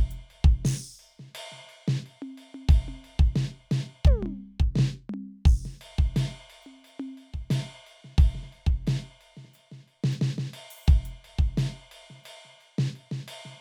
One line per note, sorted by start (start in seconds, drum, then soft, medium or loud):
0.11 closed hi-hat medium
0.30 ride bell soft
0.44 kick loud
0.65 snare loud
0.65 crash loud
0.99 ride bell soft
1.20 snare soft
1.35 ride bell loud
1.52 snare soft
1.69 ride soft
1.88 snare loud
2.06 ride soft
2.22 high tom loud
2.38 ride bell soft
2.55 high tom medium
2.69 kick loud
2.69 ride medium
2.88 high tom medium
3.04 ride bell soft
3.19 kick loud
3.36 snare loud
3.36 ride bell soft
3.71 snare loud
3.71 ride bell medium
4.05 kick loud
4.05 mid tom medium
4.05 high tom loud
4.23 mid tom loud
4.23 high tom medium
4.60 kick loud
4.76 snare loud
4.79 snare loud
5.10 mid tom loud
5.14 high tom medium
5.46 kick loud
5.46 crash medium
5.65 snare soft
5.81 ride medium
5.99 kick loud
6.16 snare loud
6.16 ride medium
6.50 ride medium
6.62 hi-hat pedal soft
6.66 high tom medium
6.85 hi-hat pedal soft
6.85 ride soft
7.00 high tom loud
7.18 ride bell soft
7.34 kick soft
7.51 snare loud
7.51 ride loud
7.87 ride soft
8.05 snare soft
8.18 kick loud
8.18 ride bell medium
8.29 ride soft
8.35 snare soft
8.43 snare soft
8.53 ride bell soft
8.67 kick medium
8.87 snare loud
8.87 ride bell medium
9.21 ride bell soft
9.37 snare soft
9.45 snare soft
9.54 hi-hat pedal medium
9.54 ride bell soft
9.72 snare soft
9.88 ride bell soft
10.04 snare loud
10.12 hi-hat pedal medium
10.22 snare loud
10.38 snare medium
10.54 ride medium
10.71 open hi-hat medium
10.88 kick loud
10.88 hi-hat pedal soft
10.88 ride medium
11.05 closed hi-hat medium
11.25 ride medium
11.39 kick loud
11.58 snare loud
11.58 ride medium
11.92 ride medium
12.10 snare soft
12.24 hi-hat pedal soft
12.24 ride medium
12.45 snare soft
12.61 ride soft
12.79 snare loud
12.96 ride soft
13.12 snare medium
13.28 ride loud
13.45 snare soft